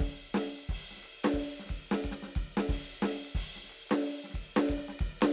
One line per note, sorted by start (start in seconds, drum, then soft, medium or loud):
0.01 kick medium
0.01 ride medium
0.24 ride soft
0.35 snare loud
0.35 hi-hat pedal loud
0.35 ride medium
0.59 ride medium
0.70 kick medium
0.70 ride medium
0.91 snare soft
0.97 snare soft
1.04 hi-hat pedal loud
1.04 ride medium
1.24 snare loud
1.24 ride loud
1.34 kick soft
1.34 ride medium
1.60 snare soft
1.66 snare soft
1.66 ride medium
1.71 kick medium
1.71 hi-hat pedal soft
1.92 snare loud
1.92 ride loud
2.05 kick soft
2.05 ride loud
2.12 snare medium
2.23 snare medium
2.28 snare soft
2.36 kick medium
2.36 hi-hat pedal medium
2.36 ride loud
2.58 snare loud
2.58 ride loud
2.70 kick medium
2.70 ride medium
3.03 snare loud
3.03 hi-hat pedal medium
3.03 ride medium
3.26 ride medium
3.36 kick medium
3.36 ride loud
3.56 snare soft
3.64 snare soft
3.70 hi-hat pedal medium
3.70 ride medium
3.90 snare loud
3.90 ride medium
4.03 ride medium
4.24 snare soft
4.30 snare soft
4.35 kick medium
4.35 hi-hat pedal soft
4.35 ride medium
4.57 snare loud
4.57 ride loud
4.70 kick medium
4.70 ride loud
4.78 snare soft
4.89 snare medium
5.00 kick medium
5.00 ride loud
5.22 snare loud
5.22 ride loud